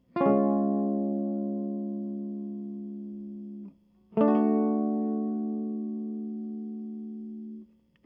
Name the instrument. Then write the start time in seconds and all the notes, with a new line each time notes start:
electric guitar
0.17 F4
0.21 C#4
0.27 G#3
0.31 D3
4.18 A3 D4
4.28 F#4